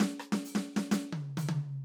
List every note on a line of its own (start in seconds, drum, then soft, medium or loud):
0.00 snare loud
0.00 hi-hat pedal soft
0.20 cross-stick medium
0.32 snare medium
0.45 hi-hat pedal medium
0.55 snare medium
0.76 snare medium
0.91 snare loud
0.91 hi-hat pedal medium
1.13 high tom loud
1.37 hi-hat pedal medium
1.37 high tom loud
1.49 high tom loud